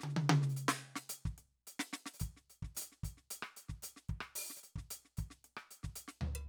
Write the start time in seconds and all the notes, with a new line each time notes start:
0.01 snare, high tom
0.10 snare
0.17 high tom
0.30 high tom
0.43 snare
0.50 hi-hat pedal
0.57 closed hi-hat
0.69 snare
0.96 snare
1.10 closed hi-hat
1.26 kick, snare
1.39 closed hi-hat
1.68 closed hi-hat
1.80 snare
1.94 snare
2.06 snare
2.14 hi-hat pedal
2.20 closed hi-hat, kick
2.37 snare
2.51 closed hi-hat
2.63 kick, snare
2.76 closed hi-hat, hi-hat pedal
2.82 closed hi-hat
2.93 snare
3.04 closed hi-hat, kick
3.18 snare
3.31 closed hi-hat
3.43 cross-stick
3.57 closed hi-hat
3.69 kick, snare
3.83 closed hi-hat, hi-hat pedal
3.97 snare
4.09 kick, closed hi-hat
4.21 cross-stick
4.36 open hi-hat
4.51 snare
4.57 hi-hat pedal
4.64 closed hi-hat
4.76 kick, snare
4.81 kick
4.91 closed hi-hat
5.06 snare
5.18 closed hi-hat, kick
5.28 kick, snare
5.45 closed hi-hat
5.57 cross-stick
5.71 closed hi-hat
5.84 kick, snare
5.90 kick
5.96 closed hi-hat
6.09 snare
6.22 floor tom
6.36 percussion